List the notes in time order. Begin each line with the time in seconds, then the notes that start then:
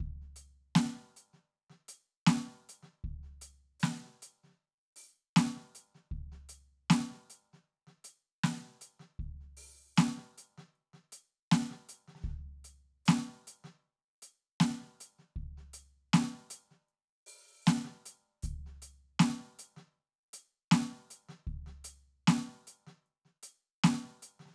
0.01 kick
0.22 snare
0.37 closed hi-hat
0.76 snare
1.17 closed hi-hat
1.34 snare
1.71 snare
1.89 closed hi-hat
2.27 snare
2.70 closed hi-hat
2.83 snare
3.05 kick
3.24 snare
3.28 snare
3.42 closed hi-hat
3.80 snare, hi-hat pedal
4.05 snare
4.13 snare
4.23 closed hi-hat
4.44 snare
4.47 snare
4.50 snare
4.97 open hi-hat
5.37 snare, hi-hat pedal
5.57 snare
5.67 snare
5.76 closed hi-hat
5.95 snare
6.01 snare
6.12 kick
6.33 snare
6.50 open hi-hat
6.91 snare, hi-hat pedal
7.13 snare
7.31 closed hi-hat
7.54 snare
7.88 snare
8.05 closed hi-hat
8.44 snare
8.54 snare
8.82 closed hi-hat
9.00 snare
9.20 kick, closed hi-hat
9.31 kick
9.41 snare
9.58 open hi-hat
9.97 snare, hi-hat pedal
10.18 snare
10.25 snare
10.38 closed hi-hat
10.58 snare
10.76 closed hi-hat
10.94 snare
11.13 closed hi-hat
11.52 snare
11.71 snare
11.90 closed hi-hat
12.08 snare
12.16 snare
12.21 kick, snare
12.27 snare
12.33 kick
12.65 closed hi-hat
13.06 snare, hi-hat pedal
13.48 closed hi-hat
13.65 snare
14.23 closed hi-hat
14.61 snare
14.83 snare
14.89 snare
15.01 closed hi-hat
15.19 snare
15.37 kick
15.58 snare
15.74 closed hi-hat
16.14 snare
16.20 snare
16.38 snare
16.43 snare
16.51 closed hi-hat
16.71 snare
16.89 closed hi-hat
17.27 open hi-hat
17.67 snare, hi-hat pedal
17.85 snare
17.92 snare
18.06 closed hi-hat
18.43 kick, hi-hat pedal
18.47 closed hi-hat
18.67 snare
18.71 snare
18.73 snare
18.76 snare
18.83 closed hi-hat
19.20 snare
19.60 closed hi-hat
19.77 snare
20.34 closed hi-hat
20.72 snare
21.11 closed hi-hat
21.29 snare
21.48 kick, closed hi-hat
21.67 snare
21.85 closed hi-hat
22.28 snare
22.68 closed hi-hat
22.87 snare
23.07 closed hi-hat
23.26 snare
23.44 closed hi-hat
23.84 snare
23.91 snare
24.07 snare
24.23 closed hi-hat
24.40 snare
24.46 snare
24.51 snare